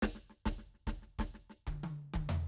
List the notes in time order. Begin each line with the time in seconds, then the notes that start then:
0.02 kick, snare
0.15 snare
0.30 snare
0.46 kick, snare
0.58 snare
0.74 snare
0.87 kick, snare
1.02 snare
1.19 kick, snare
1.34 snare
1.50 snare
1.67 kick, high tom
1.83 high tom
2.14 kick, high tom
2.29 floor tom